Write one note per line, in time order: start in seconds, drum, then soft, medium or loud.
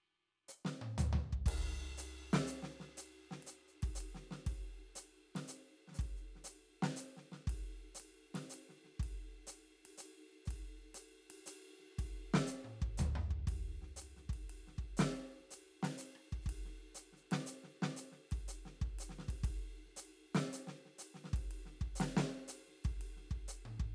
0.48 hi-hat pedal medium
0.65 snare medium
0.81 high tom medium
0.98 floor tom loud
0.98 hi-hat pedal medium
1.13 floor tom medium
1.32 kick soft
1.46 kick medium
1.46 ride medium
1.46 crash medium
1.98 hi-hat pedal medium
1.98 ride medium
2.33 snare medium
2.33 ride medium
2.47 hi-hat pedal medium
2.47 ride soft
2.63 snare soft
2.80 snare soft
2.97 hi-hat pedal medium
2.97 ride medium
3.31 snare soft
3.42 ride soft
3.47 hi-hat pedal medium
3.68 hi-hat pedal soft
3.82 kick medium
3.82 ride medium
3.95 hi-hat pedal medium
4.01 ride soft
4.15 snare soft
4.31 snare soft
4.46 kick soft
4.46 ride medium
4.95 hi-hat pedal medium
5.00 ride soft
5.35 snare soft
5.35 ride medium
5.48 hi-hat pedal medium
5.48 ride soft
5.88 snare soft
5.91 snare soft
5.91 hi-hat pedal soft
5.95 kick medium
5.95 snare soft
6.01 ride soft
6.16 hi-hat pedal soft
6.35 snare soft
6.44 hi-hat pedal medium
6.44 ride soft
6.82 snare medium
6.82 ride soft
6.96 hi-hat pedal medium
7.01 ride soft
7.17 snare soft
7.32 snare soft
7.47 kick medium
7.47 ride medium
7.95 hi-hat pedal medium
8.00 ride medium
8.34 snare soft
8.34 ride medium
8.50 hi-hat pedal medium
8.54 ride soft
8.69 snare soft
8.84 snare soft
8.99 kick soft
8.99 ride soft
9.47 hi-hat pedal medium
9.47 ride medium
9.85 ride medium
9.98 hi-hat pedal medium
9.98 ride medium
10.45 kick soft
10.45 hi-hat pedal soft
10.51 ride medium
10.94 hi-hat pedal medium
10.94 ride medium
11.30 ride medium
11.46 hi-hat pedal medium
11.46 ride medium
11.79 snare soft
11.98 kick soft
11.98 ride medium
12.34 snare medium
12.47 hi-hat pedal medium
12.52 ride soft
12.64 high tom soft
12.82 kick medium
12.97 floor tom loud
12.97 hi-hat pedal medium
13.15 mid tom medium
13.31 kick soft
13.47 kick medium
13.47 ride medium
13.67 snare soft
13.82 snare soft
13.96 hi-hat pedal medium
14.02 ride soft
14.16 snare soft
14.16 hi-hat pedal soft
14.29 kick soft
14.33 ride soft
14.50 ride soft
14.67 snare soft
14.78 kick soft
14.97 snare medium
14.97 hi-hat pedal medium
14.97 ride medium
15.40 snare soft
15.51 hi-hat pedal medium
15.51 ride medium
15.83 snare medium
15.83 ride medium
15.98 hi-hat pedal medium
15.98 ride medium
16.15 cross-stick soft
16.32 kick soft
16.42 kick soft
16.42 hi-hat pedal soft
16.49 ride medium
16.65 snare soft
16.95 hi-hat pedal medium
16.99 ride soft
17.12 snare soft
17.17 hi-hat pedal soft
17.31 snare medium
17.31 ride medium
17.46 hi-hat pedal medium
17.46 ride soft
17.64 snare soft
17.82 snare medium
17.96 hi-hat pedal medium
17.96 ride soft
18.12 snare soft
18.31 kick soft
18.31 ride soft
18.48 hi-hat pedal medium
18.48 ride soft
18.65 snare soft
18.81 kick medium
18.99 hi-hat pedal medium
18.99 ride medium
19.09 snare soft
19.18 snare soft
19.28 kick soft
19.28 ride soft
19.43 kick medium
19.43 ride medium
19.86 snare soft
19.96 hi-hat pedal medium
19.96 ride medium
20.35 snare medium
20.35 ride medium
20.53 hi-hat pedal medium
20.53 ride soft
20.67 snare soft
20.85 snare soft
20.98 hi-hat pedal medium
20.98 ride medium
21.14 snare soft
21.24 snare soft
21.33 kick medium
21.33 ride soft
21.51 ride soft
21.66 snare soft
21.81 kick soft
21.95 hi-hat pedal medium
22.00 snare medium
22.00 ride medium
22.17 snare medium
22.48 hi-hat pedal medium
22.48 ride medium
22.68 snare soft
22.84 kick medium
22.84 ride soft
23.01 ride soft
23.16 snare soft
23.31 kick soft
23.48 hi-hat pedal medium
23.48 ride soft
23.65 high tom medium
23.80 kick medium